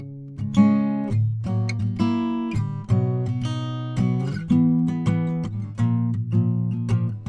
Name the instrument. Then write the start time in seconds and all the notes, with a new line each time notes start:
acoustic guitar
0.00 C#3
0.39 C#3 G#3 C#4
0.58 G#3 C#4
1.12 A2
1.45 F#3 A#3
1.81 F#3 A#3
2.00 A#3 E4
2.56 D3 G3
2.90 B2 F#3 B3
3.27 B2 F#3
3.43 B3 D#4
3.97 B2 F#3 B3
4.51 E3 B3
4.87 E3 B3 E4 G#4
5.07 E3 B3 E4 G#4
5.28 B3 E4
5.79 A#2 F3
6.15 A#2 F3
6.32 A#2 F3
6.72 A#2 F3
6.89 A#2 F3